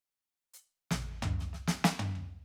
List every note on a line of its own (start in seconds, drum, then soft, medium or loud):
0.54 hi-hat pedal medium
0.91 snare loud
0.91 floor tom loud
1.22 mid tom loud
1.22 high tom loud
1.39 snare soft
1.53 snare soft
1.68 snare loud
1.84 snare loud
1.99 high tom loud
2.15 mid tom medium